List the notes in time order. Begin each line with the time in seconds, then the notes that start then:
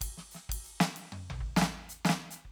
0.01 kick, hi-hat pedal, ride
0.17 snare
0.31 snare, hi-hat pedal
0.49 kick, ride
0.64 hi-hat pedal, ride
0.80 snare
0.96 ride
1.12 high tom
1.30 floor tom
1.40 kick
1.56 snare
1.61 snare
1.89 hi-hat pedal
2.05 snare
2.09 snare
2.31 hi-hat pedal
2.45 kick